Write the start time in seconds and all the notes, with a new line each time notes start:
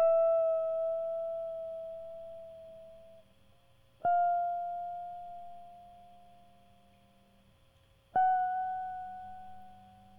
0.00 E5
4.06 F5
8.16 F#5